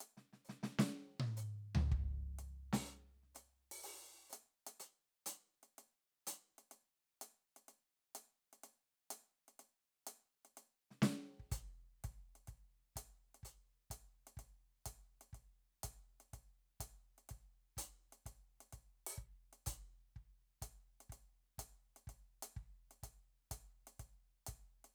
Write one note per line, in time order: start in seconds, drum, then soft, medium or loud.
0.01 open hi-hat medium
0.17 snare soft
0.33 snare soft
0.45 snare soft
0.45 hi-hat pedal soft
0.63 snare soft
0.79 snare medium
1.20 high tom medium
1.37 hi-hat pedal medium
1.75 floor tom medium
1.92 kick soft
2.39 closed hi-hat soft
2.73 open hi-hat medium
2.73 snare medium
3.23 snare soft
3.35 closed hi-hat soft
3.35 hi-hat pedal soft
3.72 open hi-hat medium
3.84 open hi-hat medium
4.30 closed hi-hat medium
4.30 hi-hat pedal soft
4.67 closed hi-hat medium
4.80 closed hi-hat medium
5.26 closed hi-hat loud
5.63 closed hi-hat soft
5.79 closed hi-hat soft
6.27 closed hi-hat loud
6.59 closed hi-hat soft
6.72 closed hi-hat soft
7.22 closed hi-hat medium
7.57 closed hi-hat soft
7.69 closed hi-hat soft
8.15 closed hi-hat medium
8.53 closed hi-hat soft
8.64 closed hi-hat soft
9.11 closed hi-hat medium
9.49 closed hi-hat soft
9.60 closed hi-hat soft
10.07 closed hi-hat medium
10.45 closed hi-hat soft
10.58 closed hi-hat soft
10.91 snare soft
11.02 snare medium
11.40 kick soft
11.52 closed hi-hat medium
11.52 kick soft
12.04 kick soft
12.04 closed hi-hat soft
12.36 closed hi-hat soft
12.48 kick soft
12.48 closed hi-hat soft
12.96 kick soft
12.96 closed hi-hat medium
13.35 closed hi-hat soft
13.44 closed hi-hat medium
13.44 kick soft
13.91 kick soft
13.91 closed hi-hat medium
14.27 closed hi-hat soft
14.37 kick soft
14.37 closed hi-hat soft
14.86 kick soft
14.86 closed hi-hat medium
15.21 closed hi-hat soft
15.33 kick soft
15.33 closed hi-hat soft
15.84 kick soft
15.84 closed hi-hat medium
16.21 closed hi-hat soft
16.34 kick soft
16.34 closed hi-hat soft
16.80 kick soft
16.80 closed hi-hat medium
17.18 closed hi-hat soft
17.30 kick soft
17.30 closed hi-hat soft
17.77 closed hi-hat medium
17.77 kick soft
18.13 closed hi-hat soft
18.26 kick soft
18.26 closed hi-hat soft
18.61 closed hi-hat soft
18.73 kick soft
18.73 closed hi-hat soft
19.07 open hi-hat medium
19.13 hi-hat pedal soft
19.18 kick soft
19.53 closed hi-hat soft
19.67 open hi-hat medium
19.67 kick soft
20.16 kick soft
20.62 kick soft
20.62 closed hi-hat medium
21.01 closed hi-hat soft
21.10 kick soft
21.10 closed hi-hat soft
21.59 kick soft
21.59 closed hi-hat medium
21.97 closed hi-hat soft
22.08 kick soft
22.08 closed hi-hat soft
22.43 open hi-hat medium
22.57 kick soft
22.91 closed hi-hat soft
23.03 kick soft
23.03 closed hi-hat medium
23.52 kick soft
23.52 closed hi-hat medium
23.88 closed hi-hat soft
24.00 kick soft
24.00 closed hi-hat soft
24.47 kick soft
24.47 closed hi-hat medium
24.85 closed hi-hat soft